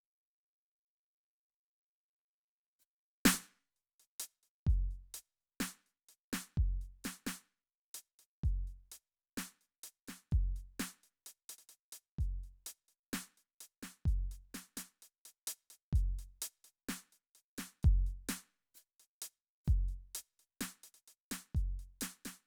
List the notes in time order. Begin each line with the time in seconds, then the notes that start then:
2.79 hi-hat pedal
3.25 snare
3.34 snare
3.76 closed hi-hat
3.99 closed hi-hat
4.20 closed hi-hat
4.43 closed hi-hat
4.66 kick, closed hi-hat
4.91 closed hi-hat
5.14 closed hi-hat
5.40 closed hi-hat
5.60 snare, closed hi-hat
5.86 closed hi-hat
6.08 closed hi-hat
6.33 snare, closed hi-hat
6.57 kick
6.81 closed hi-hat
7.04 snare, closed hi-hat
7.26 snare, closed hi-hat
7.94 closed hi-hat
8.19 closed hi-hat
8.43 kick, closed hi-hat
8.67 closed hi-hat
8.91 closed hi-hat
9.37 snare, closed hi-hat
9.61 closed hi-hat
9.83 closed hi-hat
10.07 snare, closed hi-hat
10.31 kick, closed hi-hat
10.56 closed hi-hat
10.79 snare, closed hi-hat
11.03 closed hi-hat
11.26 closed hi-hat
11.49 closed hi-hat
11.58 closed hi-hat
11.69 closed hi-hat
11.92 closed hi-hat
12.18 kick, closed hi-hat
12.43 closed hi-hat
12.66 closed hi-hat
12.88 closed hi-hat
13.13 snare, closed hi-hat
13.37 closed hi-hat
13.60 closed hi-hat
13.82 snare, closed hi-hat
14.05 kick, closed hi-hat
14.31 closed hi-hat
14.54 snare, closed hi-hat
14.77 snare, closed hi-hat
15.02 closed hi-hat
15.25 closed hi-hat
15.47 closed hi-hat
15.70 closed hi-hat
15.93 kick, closed hi-hat
16.19 closed hi-hat
16.42 closed hi-hat
16.64 closed hi-hat
16.88 snare, closed hi-hat
17.12 closed hi-hat
17.35 closed hi-hat
17.58 snare, closed hi-hat
17.83 kick, closed hi-hat
18.06 closed hi-hat
18.29 closed hi-hat, snare
18.74 closed hi-hat, hi-hat pedal
18.99 closed hi-hat
19.22 open hi-hat
19.64 kick, closed hi-hat, hi-hat pedal
19.88 closed hi-hat
20.15 closed hi-hat
20.39 closed hi-hat
20.61 snare, closed hi-hat
20.83 closed hi-hat
20.94 closed hi-hat
21.07 closed hi-hat
21.31 snare, closed hi-hat
21.54 kick, closed hi-hat
21.79 closed hi-hat
22.01 closed hi-hat, snare
22.25 snare, closed hi-hat